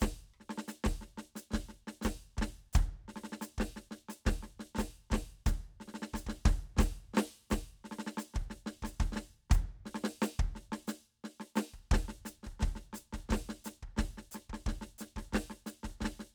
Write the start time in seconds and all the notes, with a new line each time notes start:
0.01 kick, snare, hi-hat pedal
0.35 cross-stick
0.41 snare
0.50 snare
0.59 snare
0.69 snare, hi-hat pedal
0.85 kick, snare
1.02 snare
1.18 snare
1.36 snare, hi-hat pedal
1.51 kick, snare
1.54 snare
1.70 snare
1.88 snare
2.02 kick, snare, hi-hat pedal
2.06 snare
2.38 kick, snare
2.42 snare
2.74 kick, snare, hi-hat pedal
3.09 snare
3.17 snare
3.25 snare
3.33 snare
3.42 snare, hi-hat pedal
3.59 kick, snare
3.77 snare
3.92 snare
4.10 snare, hi-hat pedal
4.26 kick, snare
4.44 snare
4.60 snare
4.76 kick, snare, hi-hat pedal
4.80 snare
5.11 kick, snare
5.14 snare
5.47 kick, snare, hi-hat pedal
5.81 snare
5.89 snare
5.95 snare
6.03 snare
6.14 kick, snare, hi-hat pedal
6.27 kick, snare
6.46 kick, snare
6.78 kick, snare
6.80 snare, hi-hat pedal
7.15 snare
7.18 snare
7.51 kick, snare, hi-hat pedal
7.85 snare
7.92 snare
8.00 snare
8.07 snare
8.18 snare, hi-hat pedal
8.35 kick, snare
8.51 snare
8.67 snare
8.83 kick, snare, hi-hat pedal
9.01 kick, snare
9.13 kick, snare
9.17 snare
9.51 kick, snare, hi-hat pedal
9.86 snare
9.95 snare
10.05 snare
10.23 snare, hi-hat pedal
10.40 kick
10.56 snare
10.73 snare
10.88 snare, hi-hat pedal
11.25 snare
11.41 snare
11.57 snare, hi-hat pedal
11.74 kick
11.92 kick, snare
11.94 snare
12.09 snare
12.26 snare, hi-hat pedal
12.44 kick, snare
12.60 kick, snare
12.76 snare
12.94 snare, hi-hat pedal
13.14 kick, snare
13.30 kick, snare
13.33 snare
13.50 snare
13.65 snare, hi-hat pedal
13.83 kick
13.97 kick, snare
14.18 snare
14.32 snare, hi-hat pedal
14.50 kick, snare
14.67 kick, snare
14.82 snare
14.99 snare, hi-hat pedal
15.17 kick, snare
15.33 kick, snare
15.35 snare
15.51 snare
15.67 snare, hi-hat pedal
15.84 kick, snare
16.01 kick, snare
16.05 snare
16.20 snare